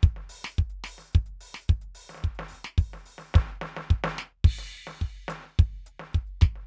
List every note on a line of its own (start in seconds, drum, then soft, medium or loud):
0.01 kick loud
0.01 closed hi-hat medium
0.01 hi-hat pedal soft
0.17 snare soft
0.30 open hi-hat loud
0.45 snare loud
0.53 hi-hat pedal soft
0.58 kick loud
0.58 closed hi-hat soft
0.70 closed hi-hat soft
0.84 open hi-hat medium
0.84 snare loud
0.99 snare soft
1.09 hi-hat pedal soft
1.13 kick loud
1.13 closed hi-hat medium
1.27 closed hi-hat soft
1.41 open hi-hat medium
1.55 snare medium
1.63 hi-hat pedal soft
1.69 kick loud
1.69 closed hi-hat medium
1.82 closed hi-hat soft
1.95 open hi-hat medium
2.10 snare soft
2.15 snare soft
2.18 snare soft
2.18 hi-hat pedal soft
2.21 snare soft
2.23 kick medium
2.23 snare soft
2.23 closed hi-hat soft
2.35 closed hi-hat soft
2.40 snare medium
2.49 open hi-hat medium
2.49 kick soft
2.65 snare loud
2.78 kick loud
2.78 open hi-hat soft
2.94 snare soft
3.06 open hi-hat medium
3.19 snare soft
3.35 kick loud
3.35 snare medium
3.35 hi-hat pedal soft
3.62 snare medium
3.77 snare medium
3.88 kick loud
3.88 hi-hat pedal soft
4.04 snare loud
4.19 snare loud
4.45 kick loud
4.45 crash loud
4.59 snare soft
4.76 closed hi-hat soft
4.88 snare medium
5.00 kick medium
5.00 closed hi-hat soft
5.15 closed hi-hat soft
5.29 closed hi-hat loud
5.29 snare medium
5.44 snare soft
5.59 kick loud
5.59 closed hi-hat soft
5.72 closed hi-hat soft
5.87 closed hi-hat medium
6.00 snare medium
6.14 kick medium
6.14 closed hi-hat soft
6.27 closed hi-hat soft
6.42 closed hi-hat medium
6.42 kick loud
6.42 snare medium
6.56 snare soft